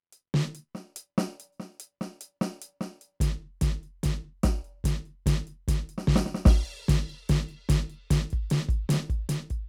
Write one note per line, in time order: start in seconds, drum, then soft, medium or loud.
0.12 closed hi-hat medium
0.34 snare loud
0.55 closed hi-hat medium
0.75 snare soft
0.96 closed hi-hat loud
1.18 snare loud
1.32 hi-hat pedal soft
1.40 closed hi-hat medium
1.52 hi-hat pedal soft
1.60 snare soft
1.72 hi-hat pedal soft
1.80 closed hi-hat loud
2.01 snare medium
2.21 closed hi-hat loud
2.41 snare medium
2.61 closed hi-hat loud
2.81 snare medium
3.01 closed hi-hat medium
3.20 closed hi-hat loud
3.20 kick medium
3.20 snare medium
3.61 closed hi-hat loud
3.61 kick medium
3.61 snare medium
3.83 closed hi-hat soft
4.03 closed hi-hat loud
4.03 kick medium
4.03 snare loud
4.43 closed hi-hat loud
4.43 kick medium
4.43 snare loud
4.64 closed hi-hat soft
4.84 closed hi-hat loud
4.84 kick medium
4.84 snare medium
5.05 closed hi-hat soft
5.26 closed hi-hat loud
5.26 kick medium
5.26 snare loud
5.35 kick soft
5.47 closed hi-hat soft
5.68 closed hi-hat loud
5.68 kick medium
5.68 snare medium
5.89 closed hi-hat medium
5.98 snare medium
6.07 kick medium
6.07 snare loud
6.16 kick soft
6.16 snare loud
6.34 snare medium
6.45 kick loud
6.45 snare loud
6.45 crash medium
6.65 closed hi-hat soft
6.88 closed hi-hat loud
6.88 kick medium
6.88 snare loud
7.09 closed hi-hat soft
7.29 closed hi-hat loud
7.29 kick medium
7.29 snare loud
7.49 closed hi-hat soft
7.69 closed hi-hat loud
7.69 kick medium
7.69 snare loud
7.89 closed hi-hat soft
8.10 closed hi-hat loud
8.10 kick medium
8.10 snare loud
8.30 closed hi-hat soft
8.30 kick medium
8.50 closed hi-hat loud
8.50 snare loud
8.69 closed hi-hat soft
8.69 kick medium
8.89 closed hi-hat loud
8.89 snare loud
8.93 snare medium
9.10 closed hi-hat soft
9.10 kick medium
9.18 kick soft
9.29 closed hi-hat loud
9.29 snare loud
9.50 closed hi-hat soft
9.50 kick soft